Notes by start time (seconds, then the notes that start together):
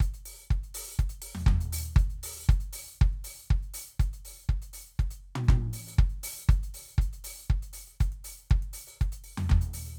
0.01 closed hi-hat, kick
0.14 closed hi-hat
0.26 open hi-hat
0.40 open hi-hat
0.44 hi-hat pedal
0.51 kick, closed hi-hat
0.64 closed hi-hat
0.75 open hi-hat
0.89 open hi-hat
0.94 hi-hat pedal
1.00 kick, closed hi-hat
1.10 closed hi-hat
1.23 open hi-hat
1.36 floor tom
1.42 hi-hat pedal
1.47 kick, floor tom
1.61 closed hi-hat
1.73 open hi-hat
1.87 open hi-hat
1.93 kick, hi-hat pedal
1.99 closed hi-hat
2.10 closed hi-hat
2.19 kick
2.24 open hi-hat
2.37 open hi-hat
2.45 hi-hat pedal
2.50 closed hi-hat, kick
2.61 closed hi-hat
2.73 open hi-hat
2.87 open hi-hat
2.97 hi-hat pedal
3.02 closed hi-hat, kick
3.14 closed hi-hat
3.25 open hi-hat
3.40 open hi-hat
3.48 kick, hi-hat pedal
3.63 closed hi-hat
3.74 open hi-hat
3.91 open hi-hat
3.95 hi-hat pedal
4.00 closed hi-hat, kick
4.14 closed hi-hat
4.26 open hi-hat
4.40 open hi-hat
4.44 hi-hat pedal
4.50 kick, closed hi-hat
4.63 closed hi-hat
4.74 open hi-hat
4.89 open hi-hat
4.96 hi-hat pedal
5.00 kick, closed hi-hat
5.11 closed hi-hat
5.24 open hi-hat
5.36 mid tom
5.44 hi-hat pedal
5.49 kick, mid tom
5.74 open hi-hat
5.88 open hi-hat
5.94 hi-hat pedal
5.99 kick, closed hi-hat
6.10 closed hi-hat
6.24 open hi-hat
6.38 open hi-hat
6.44 hi-hat pedal
6.50 closed hi-hat, kick
6.64 closed hi-hat
6.75 open hi-hat
6.88 open hi-hat
6.93 hi-hat pedal
6.99 closed hi-hat, kick
7.14 closed hi-hat
7.25 open hi-hat
7.39 open hi-hat
7.46 hi-hat pedal
7.51 kick, closed hi-hat
7.63 closed hi-hat
7.74 open hi-hat
7.88 open hi-hat
7.95 hi-hat pedal
8.01 closed hi-hat, kick
8.13 closed hi-hat
8.25 open hi-hat
8.40 open hi-hat
8.46 hi-hat pedal
8.51 kick, closed hi-hat
8.63 closed hi-hat
8.74 open hi-hat
8.88 open hi-hat
8.96 hi-hat pedal
9.02 kick, closed hi-hat
9.13 closed hi-hat
9.25 open hi-hat
9.38 floor tom
9.48 kick, floor tom, hi-hat pedal
9.62 closed hi-hat
9.74 open hi-hat
9.86 open hi-hat
9.96 hi-hat pedal